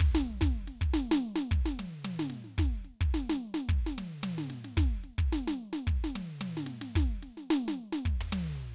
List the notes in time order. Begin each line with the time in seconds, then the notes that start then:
0.01 kick
0.16 snare
0.42 kick, snare
0.68 snare
0.82 kick
0.94 snare
1.12 snare
1.36 snare
1.52 kick
1.66 snare
1.80 high tom
2.05 high tom
2.20 snare
2.31 snare
2.45 snare
2.59 kick, snare
2.85 snare
3.02 kick
3.15 snare
3.30 snare
3.55 snare
3.70 kick
3.87 snare
3.99 high tom
4.24 high tom
4.39 snare
4.51 snare
4.65 snare
4.78 kick, snare
5.04 snare
5.19 kick
5.33 snare
5.48 snare
5.74 snare
5.88 kick
6.05 snare
6.16 high tom
6.42 high tom
6.58 snare
6.67 snare
6.82 snare
6.96 kick, snare
7.23 snare
7.38 snare
7.51 snare
7.69 snare
7.93 snare
8.06 kick
8.21 floor tom
8.33 high tom